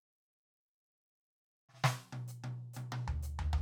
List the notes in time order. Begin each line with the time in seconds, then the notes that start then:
1.69 snare
1.74 snare
1.77 snare
1.83 snare, hi-hat pedal
2.12 high tom
2.28 hi-hat pedal
2.44 open hi-hat, high tom
2.73 hi-hat pedal, high tom
2.92 high tom
3.08 floor tom
3.22 hi-hat pedal
3.39 floor tom
3.53 floor tom